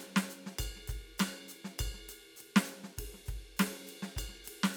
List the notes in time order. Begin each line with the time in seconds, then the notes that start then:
0.01 hi-hat pedal, ride
0.17 snare
0.30 hi-hat pedal, ride
0.47 snare
0.59 kick, hi-hat pedal, ride bell
0.77 snare
0.82 snare
0.88 kick, hi-hat pedal, ride
1.19 snare, hi-hat pedal, ride bell
1.49 hi-hat pedal, ride
1.65 snare
1.79 kick, hi-hat pedal, ride bell
1.87 kick
1.90 kick
1.94 snare
2.09 hi-hat pedal, ride
2.37 hi-hat pedal
2.41 ride
2.56 snare
2.65 hi-hat pedal
2.70 ride
2.84 snare
2.97 kick, hi-hat pedal, ride
3.14 snare
3.26 kick, hi-hat pedal, ride
3.37 kick
3.57 snare, hi-hat pedal, ride
3.87 hi-hat pedal, ride
4.03 snare
4.17 kick, hi-hat pedal, ride bell
4.22 kick
4.29 snare
4.34 snare
4.45 hi-hat pedal, ride
4.64 snare
4.73 hi-hat pedal